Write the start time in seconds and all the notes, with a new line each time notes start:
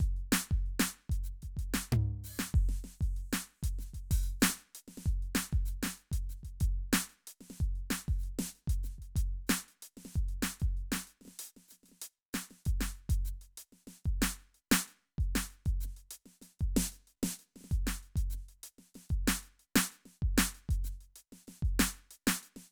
0.01 kick, closed hi-hat
0.17 closed hi-hat
0.33 snare
0.52 kick, closed hi-hat
0.67 closed hi-hat
0.80 snare
1.10 open hi-hat, kick
1.24 hi-hat pedal
1.43 kick, closed hi-hat
1.58 kick, closed hi-hat
1.75 snare
1.93 floor tom
2.25 hi-hat pedal
2.40 snare
2.55 kick, crash
2.70 snare
2.85 snare
3.02 kick, closed hi-hat
3.17 closed hi-hat
3.34 snare
3.47 closed hi-hat
3.64 closed hi-hat, kick
3.79 snare, hi-hat pedal
3.94 kick, closed hi-hat
4.12 open hi-hat, kick
4.41 snare, hi-hat pedal
4.50 snare
4.58 closed hi-hat
4.76 closed hi-hat
4.89 snare
4.98 snare
5.07 kick, closed hi-hat
5.23 closed hi-hat
5.36 snare
5.53 kick, open hi-hat
5.66 closed hi-hat, hi-hat pedal
5.84 snare
5.87 snare
5.98 closed hi-hat
6.12 open hi-hat, kick
6.30 snare, hi-hat pedal
6.44 kick, closed hi-hat
6.61 open hi-hat, kick
6.93 snare, hi-hat pedal
7.10 closed hi-hat
7.28 closed hi-hat
7.41 snare
7.51 snare
7.61 kick, closed hi-hat
7.76 closed hi-hat
7.91 snare
8.09 kick, open hi-hat
8.19 hi-hat pedal
8.24 closed hi-hat
8.40 snare
8.56 closed hi-hat
8.68 open hi-hat, kick
8.84 snare, hi-hat pedal
8.99 kick, closed hi-hat
9.17 open hi-hat, kick
9.48 snare, hi-hat pedal
9.69 closed hi-hat
9.83 closed hi-hat
9.98 snare
10.06 snare
10.15 kick, closed hi-hat
10.29 closed hi-hat
10.43 snare
10.61 kick, closed hi-hat
10.78 closed hi-hat
10.93 snare
10.96 snare
11.08 closed hi-hat
11.22 snare
11.26 snare
11.28 snare
11.40 open hi-hat
11.57 snare
11.69 closed hi-hat, hi-hat pedal
11.73 snare
11.84 snare, closed hi-hat
11.89 snare
11.92 snare
12.02 open hi-hat
12.34 snare, closed hi-hat, hi-hat pedal
12.51 snare, closed hi-hat
12.66 closed hi-hat, kick
12.81 snare
12.96 closed hi-hat
13.10 closed hi-hat, kick
13.26 hi-hat pedal
13.42 closed hi-hat
13.58 closed hi-hat
13.73 snare
13.88 snare, closed hi-hat
14.06 kick, closed hi-hat
14.23 snare
14.40 closed hi-hat
14.55 closed hi-hat
14.72 snare
14.89 closed hi-hat
15.19 kick, closed hi-hat
15.36 snare
15.51 closed hi-hat
15.66 kick, open hi-hat
15.81 hi-hat pedal
15.86 snare
15.97 closed hi-hat
16.12 closed hi-hat
16.26 snare
16.42 snare, closed hi-hat
16.60 kick, closed hi-hat
16.77 snare
16.93 closed hi-hat
17.08 closed hi-hat
17.24 snare
17.40 closed hi-hat
17.57 snare
17.62 snare
17.65 snare
17.72 kick, closed hi-hat
17.88 snare
18.04 closed hi-hat
18.17 open hi-hat, kick
18.31 hi-hat pedal
18.35 snare
18.49 closed hi-hat
18.64 closed hi-hat
18.79 snare
18.95 snare, closed hi-hat
19.10 kick, closed hi-hat
19.28 snare
19.44 closed hi-hat
19.60 closed hi-hat
19.76 snare
19.93 closed hi-hat
20.06 snare
20.23 kick, closed hi-hat
20.39 snare
20.55 closed hi-hat
20.70 kick, open hi-hat
20.85 snare, hi-hat pedal
21.01 closed hi-hat
21.17 closed hi-hat
21.33 snare
21.48 snare, closed hi-hat
21.63 kick, closed hi-hat
21.80 snare
21.95 closed hi-hat
22.12 closed hi-hat
22.28 snare
22.44 closed hi-hat
22.57 snare